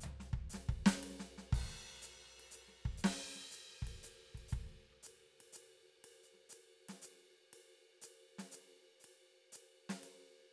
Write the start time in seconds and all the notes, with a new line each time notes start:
0.01 floor tom, hi-hat pedal
0.20 snare
0.33 kick
0.50 hi-hat pedal, ride
0.54 snare
0.69 kick
0.86 snare, ride
1.03 ride
1.20 snare
1.38 snare
1.53 kick, crash
1.91 snare
2.02 hi-hat pedal, ride
2.40 ride
2.51 hi-hat pedal
2.56 ride
2.68 snare
2.86 kick
2.98 hi-hat pedal
3.04 snare, crash
3.36 snare
3.52 hi-hat pedal, ride
3.69 snare
3.82 kick
3.87 ride
4.03 hi-hat pedal, ride
4.35 kick, ride
4.49 hi-hat pedal
4.53 kick, ride
4.93 cross-stick
5.03 hi-hat pedal, ride
5.41 ride
5.53 hi-hat pedal, ride
6.04 ride
6.24 hi-hat pedal
6.34 snare
6.50 hi-hat pedal, ride
6.89 snare, ride
7.02 hi-hat pedal, ride
7.53 ride
8.02 hi-hat pedal, ride
8.39 snare, ride
8.52 hi-hat pedal, ride
9.00 hi-hat pedal
9.05 ride
9.53 hi-hat pedal, ride
9.90 snare, ride
10.03 hi-hat pedal, ride